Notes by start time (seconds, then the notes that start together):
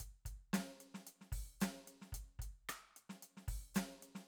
0.00 kick, closed hi-hat
0.25 kick, closed hi-hat
0.53 snare, closed hi-hat
0.58 snare
0.80 closed hi-hat
0.94 snare
1.07 closed hi-hat
1.21 snare
1.32 kick, open hi-hat
1.60 snare, closed hi-hat, hi-hat pedal
1.87 closed hi-hat
2.01 snare
2.12 kick, closed hi-hat
2.39 kick, closed hi-hat
2.69 cross-stick, closed hi-hat
2.96 closed hi-hat
3.09 snare
3.22 closed hi-hat
3.37 snare
3.48 kick, open hi-hat
3.74 snare, closed hi-hat, hi-hat pedal
4.02 closed hi-hat
4.15 snare